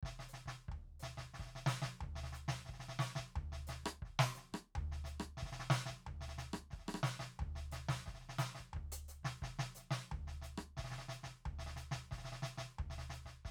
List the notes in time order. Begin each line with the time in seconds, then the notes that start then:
0.02 kick, snare
0.19 snare
0.29 hi-hat pedal
0.33 snare
0.46 kick, snare
0.68 kick, floor tom
0.99 snare, hi-hat pedal
1.17 kick, snare
1.34 snare
1.39 kick, snare
1.46 snare
1.55 snare
1.66 snare, hi-hat pedal
1.82 kick, snare
2.01 kick, floor tom
2.15 snare
2.23 snare
2.32 snare, hi-hat pedal
2.48 kick, snare
2.65 kick, snare
2.73 snare
2.79 snare
2.88 snare
2.99 snare, hi-hat pedal
3.15 kick, snare
3.36 kick, floor tom
3.52 snare
3.67 snare, hi-hat pedal
3.83 kick, cross-stick
4.02 kick, snare
4.19 snare
4.35 snare, hi-hat pedal
4.53 kick, cross-stick
4.75 kick, floor tom
4.92 snare
5.04 snare, hi-hat pedal
5.20 kick, cross-stick
5.37 snare
5.42 kick, snare
5.52 snare
5.59 snare
5.70 snare, hi-hat pedal
5.86 kick, snare
6.06 kick, floor tom
6.21 snare
6.28 snare
6.38 snare, hi-hat pedal
6.53 kick, cross-stick
6.70 kick, snare
6.79 snare
6.85 cross-stick, snare
6.94 cross-stick
6.97 cross-stick
7.03 snare, hi-hat pedal
7.19 kick, snare
7.39 kick, floor tom
7.55 snare
7.71 snare, hi-hat pedal
7.89 kick, snare
8.06 kick, snare
8.14 snare
8.20 snare
8.29 snare
8.38 snare, hi-hat pedal
8.55 snare
8.60 kick
8.73 kick, floor tom
8.92 closed hi-hat
9.08 snare, hi-hat pedal
9.23 kick, snare
9.42 kick, snare
9.59 snare
9.75 snare, hi-hat pedal
9.90 kick, snare
10.11 kick, floor tom
10.27 snare
10.42 snare, hi-hat pedal
10.58 kick, cross-stick
10.77 kick, snare
10.84 snare
10.90 snare
10.91 snare
10.98 snare
11.08 snare, hi-hat pedal
11.23 kick, snare
11.45 kick, floor tom
11.59 snare
11.66 snare
11.76 snare, hi-hat pedal
11.91 kick, snare
12.11 kick, snare
12.18 snare
12.23 snare
12.32 snare
12.42 snare, hi-hat pedal
12.58 kick, snare
12.79 kick, floor tom
12.90 snare
12.98 snare
13.10 snare, hi-hat pedal
13.25 kick, snare
13.45 kick, snare